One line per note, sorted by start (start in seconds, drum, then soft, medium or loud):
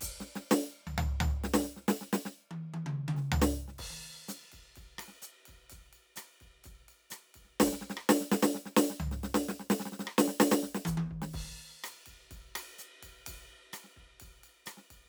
0.01 kick soft
0.01 hi-hat pedal loud
0.01 ride medium
0.21 snare medium
0.36 snare medium
0.51 snare loud
0.87 floor tom medium
0.98 floor tom loud
1.21 floor tom loud
1.28 snare soft
1.44 snare medium
1.54 snare loud
1.59 snare soft
1.64 snare soft
1.77 snare soft
1.88 snare loud
2.01 snare soft
2.13 snare loud
2.26 snare medium
2.51 high tom medium
2.74 high tom medium
2.86 mid tom loud
3.08 mid tom loud
3.17 snare soft
3.32 kick soft
3.32 floor tom loud
3.42 snare loud
3.68 snare soft
3.79 kick soft
3.79 crash medium
3.90 high tom soft
4.29 snare medium
4.29 hi-hat pedal medium
4.29 ride medium
4.43 snare soft
4.52 kick soft
4.52 ride soft
4.58 kick soft
4.75 kick soft
4.75 hi-hat pedal soft
4.75 ride soft
4.99 cross-stick medium
4.99 ride medium
5.08 snare soft
5.22 hi-hat pedal medium
5.22 ride soft
5.46 kick soft
5.46 ride medium
5.53 kick soft
5.70 kick soft
5.70 hi-hat pedal soft
5.70 ride medium
5.77 kick soft
5.93 ride soft
6.16 cross-stick medium
6.16 hi-hat pedal medium
6.16 ride medium
6.41 kick soft
6.41 ride soft
6.46 kick soft
6.64 kick soft
6.64 hi-hat pedal soft
6.64 ride soft
6.89 ride soft
7.11 cross-stick medium
7.11 hi-hat pedal medium
7.11 ride medium
7.34 kick soft
7.34 ride soft
7.45 snare soft
7.60 kick soft
7.60 snare loud
7.60 hi-hat pedal medium
7.67 snare soft
7.73 snare soft
7.81 snare soft
7.90 snare medium
7.97 cross-stick medium
8.09 snare loud
8.21 snare soft
8.32 snare loud
8.43 snare loud
8.55 snare soft
8.66 snare soft
8.77 snare loud
8.90 snare soft
9.00 floor tom medium
9.12 snare medium
9.24 snare medium
9.35 snare loud
9.49 snare medium
9.60 snare soft
9.70 snare loud
9.80 snare medium
9.86 snare medium
9.92 snare medium
10.00 snare medium
10.04 cross-stick medium
10.04 snare soft
10.18 snare loud
10.28 snare medium
10.40 snare loud
10.40 hi-hat pedal soft
10.52 snare loud
10.63 kick soft
10.63 snare medium
10.63 hi-hat pedal soft
10.75 snare medium
10.85 kick soft
10.85 hi-hat pedal medium
10.85 high tom loud
10.94 kick soft
10.94 high tom medium
11.11 kick soft
11.19 kick soft
11.19 snare medium
11.31 kick medium
11.31 hi-hat pedal soft
11.31 crash medium
11.40 kick soft
11.44 kick soft
11.44 snare soft
11.84 cross-stick medium
11.84 hi-hat pedal medium
11.84 ride medium
12.06 kick soft
12.06 ride medium
12.12 kick soft
12.31 kick soft
12.31 ride medium
12.37 kick soft
12.56 cross-stick medium
12.56 ride loud
12.79 hi-hat pedal medium
13.03 kick soft
13.03 ride medium
13.08 kick soft
13.26 kick soft
13.26 hi-hat pedal soft
13.26 ride loud
13.33 kick soft
13.51 ride soft
13.73 cross-stick medium
13.73 hi-hat pedal medium
13.73 ride medium
13.84 snare soft
13.97 kick soft
14.02 kick soft
14.20 kick soft
14.20 hi-hat pedal soft
14.20 ride medium
14.27 kick soft
14.44 ride medium
14.66 cross-stick medium
14.66 hi-hat pedal medium
14.66 ride medium
14.77 snare soft
14.91 kick soft
14.91 ride medium
15.05 snare soft